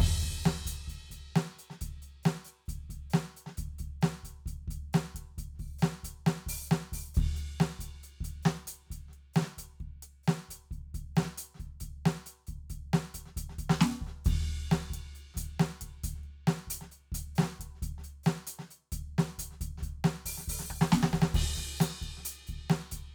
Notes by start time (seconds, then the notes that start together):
0.01 kick, crash
0.21 open hi-hat, kick
0.44 snare, hi-hat pedal
0.67 closed hi-hat, kick
0.89 closed hi-hat, kick
1.09 closed hi-hat, kick, snare
1.37 snare
1.60 closed hi-hat
1.71 snare
1.82 closed hi-hat, kick
2.03 closed hi-hat
2.24 snare, hi-hat pedal
2.46 closed hi-hat, hi-hat pedal
2.67 closed hi-hat, kick, hi-hat pedal
2.91 closed hi-hat, kick
3.11 snare, hi-hat pedal
3.38 closed hi-hat
3.47 snare
3.59 closed hi-hat, kick
3.80 closed hi-hat, kick
4.03 snare, hi-hat pedal
4.25 closed hi-hat, kick
4.47 closed hi-hat, kick
4.69 closed hi-hat, kick
4.94 snare, hi-hat pedal
5.16 kick, closed hi-hat
5.39 closed hi-hat, kick
5.56 snare
5.60 open hi-hat, kick
5.80 snare, hi-hat pedal
6.05 closed hi-hat, kick
6.28 snare
6.48 open hi-hat, kick
6.68 hi-hat pedal
6.72 snare
6.94 open hi-hat, kick
7.15 kick, hi-hat pedal, crash
7.36 closed hi-hat, snare
7.61 snare
7.80 closed hi-hat, kick
8.04 closed hi-hat
8.22 closed hi-hat, kick, snare
8.44 snare, hi-hat pedal
8.67 closed hi-hat, kick
8.87 snare
8.92 closed hi-hat, kick
9.10 snare
9.14 closed hi-hat
9.35 snare, hi-hat pedal
9.43 snare
9.59 closed hi-hat, kick
9.81 kick, closed hi-hat
10.04 closed hi-hat
10.25 hi-hat pedal
10.29 snare
10.50 closed hi-hat, kick
10.72 closed hi-hat, kick
10.96 closed hi-hat, kick
11.17 snare, hi-hat pedal
11.23 snare
11.39 closed hi-hat
11.56 snare
11.61 closed hi-hat, kick
11.81 closed hi-hat, kick
12.07 snare
12.27 closed hi-hat
12.48 closed hi-hat, kick
12.71 closed hi-hat, kick
12.95 snare
13.15 closed hi-hat, kick
13.27 snare
13.38 closed hi-hat, kick
13.51 snare
13.60 closed hi-hat, kick
13.71 snare
13.81 snare, hi-hat pedal
14.03 kick
14.08 snare
14.26 kick, hi-hat pedal, crash
14.42 snare
14.47 closed hi-hat
14.73 snare
14.91 kick, closed hi-hat
15.16 closed hi-hat
15.35 closed hi-hat, kick, snare
15.61 snare
15.82 kick, closed hi-hat
16.05 closed hi-hat, kick
16.16 snare
16.21 snare, closed hi-hat
16.48 snare
16.69 closed hi-hat, kick
16.82 snare
16.93 closed hi-hat
17.13 closed hi-hat, kick
17.37 snare, hi-hat pedal
17.43 snare
17.61 kick, closed hi-hat
17.77 snare
17.83 closed hi-hat, kick
17.99 snare
18.05 closed hi-hat
18.25 snare, hi-hat pedal
18.48 closed hi-hat
18.60 snare
18.72 closed hi-hat
18.93 closed hi-hat, kick
19.19 snare
19.40 closed hi-hat, kick
19.52 snare
19.59 closed hi-hat, kick, snare
19.79 snare
19.84 open hi-hat, kick
20.05 snare
20.27 open hi-hat, kick
20.39 snare
20.49 open hi-hat, kick
20.60 snare
20.71 kick, cross-stick
20.82 snare
20.93 kick, snare
21.04 snare
21.14 kick, snare
21.23 snare
21.36 kick, crash
21.56 open hi-hat, kick, snare
21.78 closed hi-hat, snare, hi-hat pedal
22.03 kick, closed hi-hat
22.19 snare
22.26 closed hi-hat
22.42 snare
22.48 closed hi-hat, kick
22.71 snare
22.93 closed hi-hat, kick